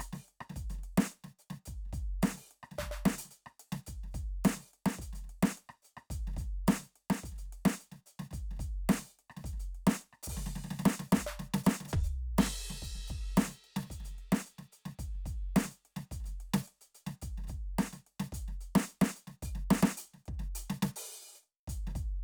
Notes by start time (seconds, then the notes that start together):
0.01 closed hi-hat, cross-stick
0.14 open hi-hat, snare
0.25 hi-hat pedal
0.29 closed hi-hat
0.42 cross-stick
0.51 snare
0.57 closed hi-hat, kick
0.62 kick
0.71 closed hi-hat, snare
0.75 snare
0.79 snare
0.84 closed hi-hat
0.99 snare
1.13 closed hi-hat
1.25 snare
1.40 open hi-hat, hi-hat pedal
1.51 snare
1.67 closed hi-hat, kick
1.86 snare
1.90 kick, snare
1.94 closed hi-hat
2.00 kick
2.03 kick
2.23 closed hi-hat, snare
2.35 open hi-hat, snare
2.47 hi-hat pedal
2.52 closed hi-hat
2.64 cross-stick
2.72 snare
2.79 kick, snare, percussion
2.84 kick
2.92 percussion
3.06 snare
3.15 snare
3.19 open hi-hat
3.26 snare
3.32 closed hi-hat
3.47 cross-stick
3.61 closed hi-hat
3.73 snare
3.88 closed hi-hat, kick
4.05 snare
4.09 snare, hi-hat pedal
4.15 closed hi-hat, kick
4.21 kick
4.24 kick
4.45 closed hi-hat, snare
4.57 open hi-hat, snare
4.69 hi-hat pedal
4.74 closed hi-hat
4.87 snare
4.97 kick, snare
5.03 closed hi-hat, kick
5.14 closed hi-hat, snare
5.19 snare
5.25 snare
5.30 closed hi-hat
5.44 snare
5.58 closed hi-hat
5.70 cross-stick
5.83 closed hi-hat, hi-hat pedal
5.98 cross-stick
6.11 closed hi-hat, kick
6.17 kick
6.20 kick
6.28 snare
6.34 kick, snare
6.38 closed hi-hat, snare
6.41 snare
6.46 kick
6.68 closed hi-hat, snare
6.80 closed hi-hat, snare
6.97 closed hi-hat
7.11 snare
7.25 closed hi-hat, kick
7.33 snare
7.37 closed hi-hat, snare
7.40 snare
7.46 snare
7.53 closed hi-hat
7.66 snare
7.81 closed hi-hat
7.93 snare
8.07 closed hi-hat, hi-hat pedal
8.20 snare
8.32 closed hi-hat, kick, snare
8.40 kick
8.52 snare
8.58 closed hi-hat, kick, snare
8.66 kick
8.69 kick
8.90 open hi-hat, snare
8.99 snare
9.06 open hi-hat
9.20 closed hi-hat
9.31 cross-stick
9.38 snare
9.45 closed hi-hat, kick
9.51 kick, snare
9.59 closed hi-hat, snare
9.76 closed hi-hat
9.88 snare
9.95 hi-hat pedal
10.02 closed hi-hat
10.14 cross-stick
10.24 hi-hat pedal
10.28 open hi-hat, kick
10.34 kick, snare
10.47 snare
10.56 snare
10.65 snare
10.72 snare
10.80 snare, hi-hat pedal
10.87 snare
11.00 snare
11.08 hi-hat pedal
11.13 kick, snare
11.28 percussion
11.40 snare
11.55 snare
11.65 snare, hi-hat pedal
11.81 snare
11.86 snare, hi-hat pedal
11.91 kick
11.94 kick
12.05 hi-hat pedal
12.39 snare, crash
12.47 snare
12.52 closed hi-hat
12.71 snare
12.83 closed hi-hat, kick
12.89 kick
12.96 snare
13.03 snare
13.08 closed hi-hat, kick
13.19 kick
13.38 closed hi-hat, snare
13.49 closed hi-hat, snare
13.65 closed hi-hat
13.77 snare
13.84 snare
13.91 closed hi-hat, kick
14.01 snare
14.05 closed hi-hat, snare
14.08 snare
14.13 snare
14.15 snare
14.19 closed hi-hat
14.33 snare
14.47 closed hi-hat
14.59 snare
14.73 closed hi-hat, hi-hat pedal
14.86 snare
15.00 closed hi-hat, kick
15.08 kick
15.16 snare
15.27 closed hi-hat, kick
15.33 kick
15.35 kick
15.57 closed hi-hat, snare
15.66 snare
15.72 open hi-hat
15.86 closed hi-hat
15.97 snare
16.12 closed hi-hat, kick, snare
16.18 kick, snare
16.25 closed hi-hat, snare
16.28 snare
16.41 closed hi-hat
16.55 snare
16.64 hi-hat pedal
16.69 closed hi-hat
16.82 closed hi-hat
16.96 closed hi-hat
17.08 snare
17.23 closed hi-hat, kick
17.29 kick
17.39 snare
17.45 snare
17.48 closed hi-hat, kick, snare
17.52 snare
17.80 closed hi-hat, snare
17.94 open hi-hat, snare
18.08 closed hi-hat
18.21 snare
18.33 closed hi-hat, kick
18.39 kick
18.49 snare
18.62 closed hi-hat
18.76 snare
18.89 closed hi-hat
19.02 snare
19.17 closed hi-hat
19.28 snare
19.43 open hi-hat, kick, hi-hat pedal
19.49 kick
19.56 snare
19.72 snare
19.84 snare
19.95 closed hi-hat, hi-hat pedal
20.15 snare
20.27 kick, closed hi-hat
20.35 kick
20.40 snare
20.56 closed hi-hat
20.71 snare
20.83 snare
20.97 open hi-hat
21.36 hi-hat pedal
21.44 closed hi-hat
21.69 closed hi-hat, kick
21.74 kick
21.77 kick
21.88 snare
21.91 snare
21.95 closed hi-hat, kick, snare
22.03 kick
22.06 kick
22.17 kick